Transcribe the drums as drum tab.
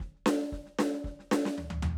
SD |oooooooooooo----|
FT |------------ooo-|
BD |o---o---o-------|